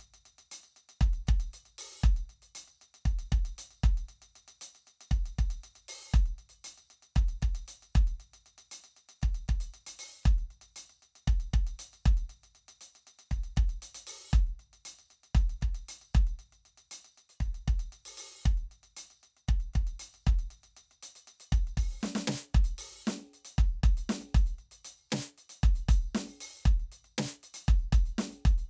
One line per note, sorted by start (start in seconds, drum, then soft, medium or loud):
0.01 closed hi-hat medium
0.15 closed hi-hat medium
0.26 closed hi-hat medium
0.39 closed hi-hat medium
0.52 closed hi-hat loud
0.64 closed hi-hat medium
0.77 closed hi-hat medium
0.90 closed hi-hat medium
1.02 kick loud
1.02 closed hi-hat medium
1.14 closed hi-hat soft
1.28 kick loud
1.28 closed hi-hat medium
1.41 closed hi-hat medium
1.54 closed hi-hat medium
1.66 closed hi-hat medium
1.79 percussion loud
1.93 percussion soft
2.02 kick loud
2.02 closed hi-hat medium
2.02 hi-hat pedal soft
2.17 closed hi-hat medium
2.30 closed hi-hat medium
2.43 closed hi-hat medium
2.56 closed hi-hat loud
2.68 closed hi-hat soft
2.82 closed hi-hat medium
2.95 closed hi-hat medium
3.06 kick medium
3.06 closed hi-hat medium
3.20 closed hi-hat medium
3.33 kick loud
3.33 closed hi-hat medium
3.46 closed hi-hat medium
3.59 closed hi-hat loud
3.71 closed hi-hat medium
3.84 kick loud
3.84 closed hi-hat medium
3.98 closed hi-hat medium
4.09 closed hi-hat medium
4.23 closed hi-hat medium
4.36 closed hi-hat medium
4.49 closed hi-hat medium
4.62 closed hi-hat loud
4.76 closed hi-hat medium
4.88 closed hi-hat medium
5.01 closed hi-hat medium
5.12 kick loud
5.12 closed hi-hat medium
5.26 closed hi-hat medium
5.39 kick medium
5.39 closed hi-hat medium
5.51 closed hi-hat medium
5.64 closed hi-hat medium
5.76 closed hi-hat medium
5.89 percussion loud
6.04 percussion soft
6.12 kick loud
6.12 hi-hat pedal soft
6.16 closed hi-hat medium
6.39 closed hi-hat medium
6.50 closed hi-hat medium
6.65 closed hi-hat loud
6.78 closed hi-hat medium
6.91 closed hi-hat medium
7.03 closed hi-hat medium
7.16 kick loud
7.16 closed hi-hat medium
7.29 closed hi-hat medium
7.43 kick medium
7.43 closed hi-hat medium
7.56 closed hi-hat medium
7.69 closed hi-hat loud
7.83 closed hi-hat medium
7.96 kick loud
7.96 closed hi-hat medium
8.08 closed hi-hat medium
8.21 closed hi-hat medium
8.34 closed hi-hat medium
8.47 closed hi-hat medium
8.59 closed hi-hat medium
8.72 closed hi-hat loud
8.85 closed hi-hat medium
8.97 closed hi-hat medium
9.10 closed hi-hat medium
9.23 kick medium
9.23 closed hi-hat medium
9.35 closed hi-hat medium
9.49 kick medium
9.49 closed hi-hat medium
9.61 closed hi-hat medium
9.75 closed hi-hat medium
9.87 closed hi-hat loud
10.00 percussion loud
10.14 percussion soft
10.24 kick loud
10.24 closed hi-hat medium
10.24 hi-hat pedal soft
10.39 closed hi-hat soft
10.51 closed hi-hat soft
10.62 closed hi-hat medium
10.77 closed hi-hat loud
10.90 closed hi-hat soft
11.03 closed hi-hat medium
11.16 closed hi-hat medium
11.28 kick loud
11.28 closed hi-hat medium
11.41 closed hi-hat medium
11.54 kick loud
11.54 closed hi-hat medium
11.68 closed hi-hat medium
11.80 closed hi-hat loud
11.94 closed hi-hat medium
12.06 kick loud
12.06 closed hi-hat medium
12.18 closed hi-hat medium
12.30 closed hi-hat medium
12.44 closed hi-hat medium
12.56 closed hi-hat medium
12.69 closed hi-hat medium
12.82 closed hi-hat medium
12.96 closed hi-hat medium
13.08 closed hi-hat medium
13.20 closed hi-hat medium
13.32 kick medium
13.32 closed hi-hat medium
13.44 closed hi-hat medium
13.57 kick loud
13.57 closed hi-hat medium
13.70 closed hi-hat medium
13.83 closed hi-hat loud
13.95 closed hi-hat loud
14.08 percussion loud
14.26 percussion soft
14.33 kick loud
14.33 closed hi-hat soft
14.33 hi-hat pedal soft
14.48 closed hi-hat soft
14.60 closed hi-hat soft
14.74 closed hi-hat medium
14.86 closed hi-hat loud
15.00 closed hi-hat medium
15.11 closed hi-hat medium
15.24 closed hi-hat medium
15.36 kick loud
15.36 closed hi-hat medium
15.50 closed hi-hat medium
15.62 kick medium
15.62 closed hi-hat soft
15.75 closed hi-hat medium
15.89 closed hi-hat loud
16.02 closed hi-hat medium
16.15 kick loud
16.15 closed hi-hat medium
16.28 closed hi-hat soft
16.40 closed hi-hat medium
16.53 closed hi-hat soft
16.66 closed hi-hat medium
16.78 closed hi-hat medium
16.92 closed hi-hat loud
17.05 closed hi-hat medium
17.18 closed hi-hat medium
17.30 closed hi-hat soft
17.41 kick medium
17.41 closed hi-hat medium
17.55 closed hi-hat medium
17.68 kick loud
17.68 closed hi-hat medium
17.80 closed hi-hat medium
17.93 closed hi-hat medium
18.06 percussion loud
18.18 percussion loud
18.35 percussion soft
18.44 kick loud
18.44 closed hi-hat soft
18.44 hi-hat pedal soft
18.58 closed hi-hat soft
18.72 closed hi-hat medium
18.84 closed hi-hat medium
18.97 closed hi-hat loud
19.11 closed hi-hat medium
19.24 closed hi-hat medium
19.38 closed hi-hat soft
19.49 kick loud
19.49 closed hi-hat soft
19.61 closed hi-hat soft
19.74 kick medium
19.74 closed hi-hat soft
19.88 closed hi-hat medium
20.00 closed hi-hat loud
20.15 closed hi-hat medium
20.27 kick loud
20.27 closed hi-hat soft
20.40 closed hi-hat medium
20.51 closed hi-hat medium
20.64 closed hi-hat medium
20.77 closed hi-hat medium
20.92 closed hi-hat soft
21.03 closed hi-hat loud
21.16 closed hi-hat medium
21.28 closed hi-hat medium
21.41 closed hi-hat medium
21.53 kick loud
21.53 closed hi-hat medium
21.68 closed hi-hat soft
21.78 kick medium
21.78 percussion medium
21.92 percussion medium
22.01 snare loud
22.01 hi-hat pedal soft
22.16 snare loud
22.28 snare loud
22.41 closed hi-hat soft
22.55 kick loud
22.55 closed hi-hat soft
22.65 closed hi-hat medium
22.79 percussion loud
22.93 percussion soft
23.06 snare loud
23.06 hi-hat pedal soft
23.22 closed hi-hat soft
23.34 closed hi-hat medium
23.46 closed hi-hat loud
23.59 kick loud
23.59 closed hi-hat soft
23.74 closed hi-hat soft
23.84 kick loud
23.84 closed hi-hat medium
23.98 closed hi-hat medium
24.10 snare loud
24.22 closed hi-hat medium
24.35 closed hi-hat medium
24.35 kick loud
24.47 closed hi-hat soft
24.59 closed hi-hat soft
24.72 closed hi-hat medium
24.85 percussion loud
25.00 percussion soft
25.11 snare loud
25.11 hi-hat pedal soft
25.26 closed hi-hat soft
25.39 closed hi-hat medium
25.50 closed hi-hat medium
25.64 kick loud
25.64 closed hi-hat medium
25.76 closed hi-hat soft
25.89 closed hi-hat loud
25.89 kick loud
26.02 closed hi-hat soft
26.15 snare loud
26.28 percussion medium
26.41 percussion loud
26.56 percussion soft
26.64 kick loud
26.64 hi-hat pedal soft
26.68 closed hi-hat soft
26.80 closed hi-hat soft
26.93 closed hi-hat medium
27.05 closed hi-hat soft
27.19 snare loud
27.31 closed hi-hat soft
27.44 closed hi-hat medium
27.55 closed hi-hat loud
27.68 kick loud
27.68 closed hi-hat soft
27.81 closed hi-hat soft
27.93 kick loud
27.93 closed hi-hat medium
28.06 closed hi-hat soft
28.19 snare loud
28.32 closed hi-hat soft
28.46 closed hi-hat medium
28.46 kick loud
28.59 closed hi-hat soft